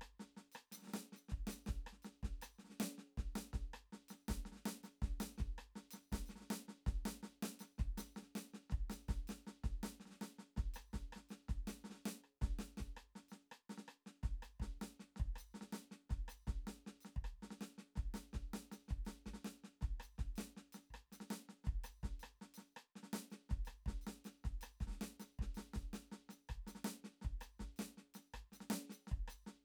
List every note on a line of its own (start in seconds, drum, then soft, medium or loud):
0.01 cross-stick medium
0.19 snare soft
0.36 snare soft
0.52 cross-stick medium
0.52 hi-hat pedal soft
0.71 snare soft
0.71 hi-hat pedal medium
0.77 snare soft
0.82 snare soft
0.85 snare soft
0.87 snare soft
0.93 snare medium
0.93 hi-hat pedal soft
1.12 snare soft
1.12 hi-hat pedal soft
1.28 kick soft
1.28 snare soft
1.47 snare medium
1.47 hi-hat pedal soft
1.66 kick soft
1.66 snare medium
1.86 cross-stick medium
1.92 snare soft
2.02 snare soft
2.02 hi-hat pedal soft
2.23 kick soft
2.23 snare soft
2.42 cross-stick medium
2.42 hi-hat pedal soft
2.58 snare soft
2.64 snare soft
2.69 snare soft
2.80 snare medium
2.80 hi-hat pedal soft
2.98 snare soft
3.17 kick soft
3.17 snare soft
3.35 snare medium
3.35 hi-hat pedal soft
3.53 kick soft
3.53 snare soft
3.73 cross-stick medium
3.92 snare soft
4.08 snare soft
4.08 hi-hat pedal soft
4.28 kick soft
4.28 snare medium
4.45 snare soft
4.52 snare soft
4.55 snare soft
4.65 snare medium
4.83 snare soft
4.83 hi-hat pedal soft
5.02 kick soft
5.02 snare soft
5.20 snare medium
5.20 hi-hat pedal medium
5.38 kick soft
5.38 snare soft
5.58 cross-stick medium
5.75 snare soft
5.91 snare soft
5.91 hi-hat pedal soft
6.12 kick soft
6.12 snare medium
6.26 snare soft
6.26 hi-hat pedal soft
6.35 snare soft
6.40 snare soft
6.50 snare medium
6.68 snare soft
6.86 kick soft
6.86 snare soft
7.05 snare medium
7.23 snare soft
7.42 snare medium
7.59 snare soft
7.59 hi-hat pedal soft
7.78 kick soft
7.78 snare soft
7.97 snare medium
7.97 hi-hat pedal medium
8.16 snare soft
8.22 snare soft
8.35 snare medium
8.35 hi-hat pedal soft
8.54 snare soft
8.70 kick soft
8.70 snare soft
8.90 snare medium
8.90 hi-hat pedal soft
9.08 kick soft
9.08 snare medium
9.27 snare medium
9.27 hi-hat pedal soft
9.47 snare soft
9.64 kick soft
9.64 snare soft
9.83 snare medium
10.00 snare soft
10.05 snare soft
10.09 snare soft
10.11 snare soft
10.21 snare medium
10.38 snare soft
10.56 kick soft
10.56 snare soft
10.74 cross-stick medium
10.74 hi-hat pedal soft
10.93 kick soft
10.93 snare soft
11.12 cross-stick medium
11.12 snare soft
11.29 snare soft
11.29 hi-hat pedal soft
11.48 kick soft
11.48 snare soft
11.67 snare medium
11.67 hi-hat pedal soft
11.84 snare soft
11.90 snare soft
11.93 snare soft
12.05 snare medium
12.24 cross-stick soft
12.41 kick soft
12.41 snare soft
12.59 snare medium
12.64 hi-hat pedal soft
12.77 kick soft
12.77 snare medium
12.97 cross-stick medium
13.15 snare soft
13.28 snare soft
13.28 hi-hat pedal soft
13.51 cross-stick medium
13.69 snare soft
13.78 snare soft
13.88 cross-stick medium
14.06 snare soft
14.23 kick soft
14.23 snare soft
14.42 cross-stick medium
14.42 hi-hat pedal soft
14.60 kick soft
14.60 snare soft
14.81 snare medium
14.99 snare soft
15.16 kick soft
15.16 snare soft
15.35 cross-stick medium
15.35 hi-hat pedal soft
15.54 snare soft
15.61 snare soft
15.72 snare medium
15.91 snare soft
16.09 kick soft
16.09 snare soft
16.28 cross-stick medium
16.28 hi-hat pedal soft
16.47 kick soft
16.47 snare soft
16.67 snare medium
16.86 snare soft
17.01 hi-hat pedal soft
17.05 snare soft
17.16 kick soft
17.24 cross-stick medium
17.42 snare soft
17.50 snare soft
17.61 snare medium
17.78 snare soft
17.95 kick soft
17.95 snare soft
18.14 snare medium
18.14 hi-hat pedal soft
18.33 kick soft
18.33 snare soft
18.53 snare medium
18.71 snare soft
18.71 hi-hat pedal soft
18.88 kick soft
18.88 snare soft
19.05 snare medium
19.05 hi-hat pedal soft
19.26 kick soft
19.26 snare soft
19.33 snare soft
19.44 snare medium
19.64 snare soft
19.81 kick soft
19.81 snare soft
20.00 cross-stick medium
20.00 hi-hat pedal soft
20.18 kick soft
20.18 snare soft
20.35 snare medium
20.35 hi-hat pedal soft
20.56 snare soft
20.72 snare soft
20.72 hi-hat pedal soft
20.90 kick soft
20.90 cross-stick medium
21.12 snare soft
21.12 hi-hat pedal soft
21.20 snare soft
21.30 snare medium
21.49 snare soft
21.64 kick soft
21.64 snare soft
21.84 cross-stick medium
21.84 hi-hat pedal soft
22.03 kick soft
22.03 snare soft
22.19 cross-stick medium
22.19 hi-hat pedal soft
22.41 snare soft
22.54 snare soft
22.54 hi-hat pedal soft
22.76 cross-stick medium
22.95 snare soft
23.03 snare soft
23.13 snare medium
23.30 snare soft
23.30 hi-hat pedal soft
23.49 kick soft
23.49 snare soft
23.65 cross-stick medium
23.65 hi-hat pedal soft
23.86 kick soft
23.86 snare soft
24.01 hi-hat pedal soft
24.07 snare medium
24.24 snare soft
24.24 hi-hat pedal soft
24.44 kick soft
24.44 snare soft
24.61 cross-stick medium
24.61 hi-hat pedal soft
24.80 kick soft
24.80 snare soft
24.87 snare soft
24.89 snare soft
24.91 snare soft
25.01 snare medium
25.19 snare soft
25.19 hi-hat pedal soft
25.39 kick soft
25.39 snare soft
25.54 snare medium
25.54 hi-hat pedal soft
25.73 kick soft
25.73 snare medium
25.93 snare medium
25.93 hi-hat pedal soft
26.11 snare soft
26.29 snare soft
26.29 hi-hat pedal soft
26.49 kick soft
26.49 cross-stick medium
26.67 snare soft
26.67 hi-hat pedal soft
26.75 snare soft
26.84 snare medium
27.04 snare soft
27.21 kick soft
27.21 snare soft
27.41 cross-stick medium
27.41 hi-hat pedal soft
27.59 kick soft
27.59 snare soft
27.76 snare medium
27.76 hi-hat pedal soft
27.97 snare soft
28.14 snare soft
28.14 hi-hat pedal soft
28.33 kick soft
28.33 cross-stick medium
28.52 snare soft
28.52 hi-hat pedal soft
28.60 snare soft
28.70 snare medium
28.89 snare soft
28.89 hi-hat pedal soft
29.07 snare soft
29.11 kick soft
29.28 cross-stick medium
29.28 hi-hat pedal soft
29.46 snare soft